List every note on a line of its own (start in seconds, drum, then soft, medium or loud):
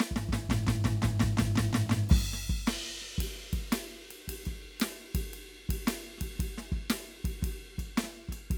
0.00 snare loud
0.11 kick medium
0.16 snare medium
0.16 floor tom loud
0.29 kick medium
0.29 floor tom loud
0.33 snare loud
0.49 kick medium
0.49 snare loud
0.49 floor tom loud
0.67 kick medium
0.67 snare loud
0.67 floor tom loud
0.84 kick medium
0.84 snare loud
0.84 floor tom loud
1.02 kick medium
1.02 snare loud
1.02 floor tom loud
1.19 kick medium
1.19 snare loud
1.19 floor tom loud
1.37 snare loud
1.37 floor tom loud
1.41 kick medium
1.55 snare loud
1.55 floor tom loud
1.60 kick soft
1.73 snare loud
1.73 floor tom loud
1.89 kick soft
1.89 snare loud
1.89 floor tom loud
2.09 kick loud
2.09 snare soft
2.09 crash loud
2.33 snare medium
2.49 kick medium
2.67 snare loud
2.67 crash loud
3.01 snare soft
3.18 kick medium
3.18 ride loud
3.27 snare soft
3.35 snare soft
3.40 snare soft
3.43 snare soft
3.53 kick medium
3.53 ride medium
3.72 snare loud
3.72 ride loud
4.11 ride medium
4.23 snare soft
4.28 kick soft
4.28 ride loud
4.43 kick medium
4.43 snare soft
4.43 ride bell medium
4.64 kick soft
4.80 snare loud
4.80 ride loud
5.15 kick medium
5.15 ride loud
5.30 snare soft
5.30 ride medium
5.35 snare soft
5.69 kick medium
5.69 ride loud
5.87 snare loud
5.87 ride loud
6.18 kick medium
6.18 snare soft
6.18 ride loud
6.35 snare soft
6.39 kick medium
6.39 ride loud
6.58 snare medium
6.72 kick medium
6.90 snare loud
6.90 ride loud
7.24 kick medium
7.24 snare soft
7.24 ride medium
7.41 kick medium
7.41 snare soft
7.41 ride loud
7.51 snare soft
7.78 kick medium
7.78 ride bell medium
7.97 snare loud
7.97 ride bell medium
8.03 snare medium
8.29 kick soft
8.29 snare soft
8.29 ride bell medium
8.47 kick medium
8.47 snare soft
8.47 ride medium